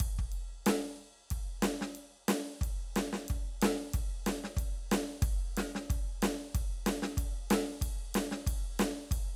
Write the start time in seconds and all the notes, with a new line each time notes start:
0.00 kick, ride
0.19 kick
0.32 ride
0.66 snare, ride
1.30 kick, ride
1.62 snare, ride
1.81 snare
1.95 ride
2.28 snare, ride
2.61 kick, ride
2.96 snare, ride
3.13 snare
3.28 kick, ride
3.62 snare, ride
3.94 kick, ride
4.26 snare, ride
4.44 snare
4.57 kick, ride
4.91 snare, ride
5.22 kick, ride
5.57 snare, ride
5.75 snare
5.90 kick, ride
6.22 snare, ride
6.54 kick, ride
6.86 snare, ride
7.02 snare
7.17 kick, ride
7.50 snare, ride
7.81 kick, ride
8.14 snare, ride
8.31 snare
8.46 kick, ride
8.79 snare, ride
9.11 kick, ride